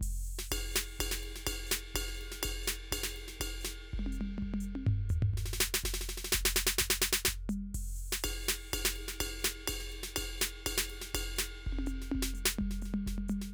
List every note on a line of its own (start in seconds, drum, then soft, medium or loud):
0.01 kick medium
0.01 crash loud
0.13 kick soft
0.24 hi-hat pedal medium
0.39 snare medium
0.52 kick soft
0.52 ride bell loud
0.58 kick soft
0.71 hi-hat pedal medium
0.76 snare loud
1.00 kick soft
1.00 ride bell loud
1.06 kick soft
1.11 snare medium
1.19 hi-hat pedal medium
1.19 ride soft
1.35 snare medium
1.47 kick soft
1.47 ride bell loud
1.53 kick soft
1.67 hi-hat pedal medium
1.71 snare loud
1.88 hi-hat pedal soft
1.95 kick soft
1.95 ride bell loud
2.01 kick soft
2.08 snare soft
2.15 hi-hat pedal medium
2.21 ride soft
2.32 snare medium
2.43 kick soft
2.43 ride bell loud
2.51 kick soft
2.63 hi-hat pedal medium
2.67 snare loud
2.92 kick soft
2.92 ride bell loud
2.98 kick soft
3.03 snare medium
3.10 hi-hat pedal medium
3.16 ride soft
3.28 snare soft
3.40 kick soft
3.40 ride bell loud
3.61 snare medium
3.61 hi-hat pedal medium
3.93 kick soft
3.99 kick soft
3.99 mid tom medium
4.06 high tom medium
4.12 hi-hat pedal medium
4.21 mid tom loud
4.38 mid tom loud
4.42 kick soft
4.49 kick soft
4.54 mid tom loud
4.60 hi-hat pedal medium
4.75 high tom loud
4.86 kick soft
4.86 floor tom loud
4.95 kick soft
5.09 floor tom loud
5.09 hi-hat pedal medium
5.22 floor tom loud
5.34 kick soft
5.34 snare medium
5.40 kick soft
5.45 snare medium
5.53 snare medium
5.53 hi-hat pedal medium
5.60 snare loud
5.74 snare loud
5.84 kick soft
5.84 snare loud
5.90 kick soft
5.90 snare medium
6.01 snare medium
6.01 hi-hat pedal medium
6.09 snare medium
6.17 snare medium
6.24 snare medium
6.32 kick soft
6.32 snare loud
6.41 kick soft
6.45 snare loud
6.55 snare loud
6.55 hi-hat pedal medium
6.67 snare loud
6.78 kick soft
6.78 snare loud
6.90 snare loud
7.02 snare loud
7.02 hi-hat pedal medium
7.13 snare loud
7.25 kick soft
7.25 snare loud
7.34 kick soft
7.49 hi-hat pedal medium
7.49 mid tom loud
7.74 kick medium
7.74 crash loud
7.86 kick soft
7.96 hi-hat pedal medium
8.12 snare medium
8.24 kick soft
8.24 ride bell loud
8.31 kick soft
8.44 hi-hat pedal medium
8.48 snare loud
8.73 kick soft
8.73 ride bell loud
8.80 kick soft
8.85 snare loud
8.92 hi-hat pedal medium
8.96 ride medium
9.08 snare medium
9.20 kick soft
9.20 ride bell loud
9.27 kick soft
9.40 hi-hat pedal medium
9.44 snare loud
9.67 kick soft
9.67 ride bell loud
9.80 snare soft
9.89 hi-hat pedal medium
9.89 ride soft
10.03 snare medium
10.16 kick soft
10.16 ride bell loud
10.24 kick soft
10.38 snare loud
10.38 hi-hat pedal medium
10.66 kick soft
10.66 ride bell loud
10.72 kick soft
10.78 snare loud
10.85 hi-hat pedal medium
10.90 ride medium
11.01 snare medium
11.14 kick soft
11.14 ride bell loud
11.21 kick soft
11.36 snare loud
11.36 hi-hat pedal medium
11.66 kick medium
11.72 kick soft
11.72 high tom medium
11.79 high tom loud
11.86 hi-hat pedal medium
11.86 high tom loud
12.02 snare soft
12.11 kick soft
12.11 high tom loud
12.21 kick soft
12.21 snare loud
12.34 hi-hat pedal medium
12.34 mid tom soft
12.45 snare loud
12.58 kick soft
12.58 mid tom loud
12.67 kick soft
12.67 snare soft
12.82 snare soft
12.82 hi-hat pedal medium
12.82 mid tom medium
12.94 mid tom loud
13.07 kick soft
13.07 snare medium
13.12 kick soft
13.18 mid tom medium
13.28 hi-hat pedal medium
13.28 mid tom loud
13.41 snare soft